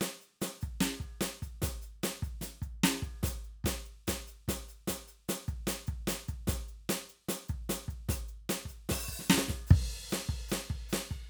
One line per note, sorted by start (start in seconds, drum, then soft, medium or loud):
0.01 closed hi-hat loud
0.01 snare loud
0.20 closed hi-hat soft
0.41 closed hi-hat loud
0.41 snare loud
0.60 closed hi-hat medium
0.60 kick medium
0.81 closed hi-hat loud
0.81 snare loud
1.00 kick soft
1.00 closed hi-hat soft
1.21 closed hi-hat loud
1.21 snare loud
1.42 closed hi-hat medium
1.42 kick soft
1.62 closed hi-hat loud
1.62 kick medium
1.62 snare medium
1.81 closed hi-hat soft
2.03 closed hi-hat loud
2.03 snare loud
2.22 closed hi-hat medium
2.22 kick medium
2.41 closed hi-hat loud
2.41 snare medium
2.62 kick soft
2.62 closed hi-hat medium
2.84 closed hi-hat loud
2.84 snare loud
3.02 kick medium
3.02 closed hi-hat soft
3.23 closed hi-hat loud
3.23 kick medium
3.23 snare medium
3.35 kick soft
3.44 closed hi-hat soft
3.64 closed hi-hat loud
3.64 kick medium
3.64 snare loud
3.86 closed hi-hat soft
4.07 closed hi-hat loud
4.07 kick soft
4.07 snare loud
4.27 closed hi-hat medium
4.48 closed hi-hat loud
4.48 kick soft
4.48 snare loud
4.68 closed hi-hat medium
4.88 closed hi-hat loud
4.88 kick soft
4.88 snare loud
5.07 closed hi-hat medium
5.28 closed hi-hat loud
5.28 snare loud
5.48 kick medium
5.48 closed hi-hat medium
5.67 closed hi-hat loud
5.67 snare loud
5.87 kick medium
5.87 closed hi-hat medium
6.07 closed hi-hat loud
6.07 snare loud
6.12 snare medium
6.28 kick medium
6.28 closed hi-hat medium
6.47 open hi-hat loud
6.47 kick medium
6.47 snare loud
6.68 closed hi-hat soft
6.89 closed hi-hat loud
6.89 snare loud
7.09 closed hi-hat medium
7.29 closed hi-hat loud
7.29 snare loud
7.48 kick medium
7.48 closed hi-hat medium
7.69 closed hi-hat loud
7.69 snare loud
7.88 kick soft
7.88 closed hi-hat soft
8.09 open hi-hat loud
8.09 kick medium
8.09 snare medium
8.28 closed hi-hat soft
8.49 closed hi-hat loud
8.49 snare loud
8.65 closed hi-hat medium
8.65 kick soft
8.89 open hi-hat loud
8.89 kick medium
8.89 snare loud
9.08 open hi-hat soft
9.08 kick soft
9.19 snare medium
9.27 snare loud
9.27 hi-hat pedal medium
9.33 kick soft
9.38 snare loud
9.48 kick medium
9.48 snare medium
9.67 kick loud
9.67 hi-hat pedal medium
9.67 crash loud
9.78 snare soft
10.10 snare loud
10.10 hi-hat pedal medium
10.10 crash medium
10.16 ride soft
10.29 kick medium
10.49 snare loud
10.49 hi-hat pedal medium
10.49 ride bell soft
10.70 kick medium
10.89 snare loud
10.89 hi-hat pedal medium
10.93 ride bell medium
11.11 kick soft
11.11 ride bell soft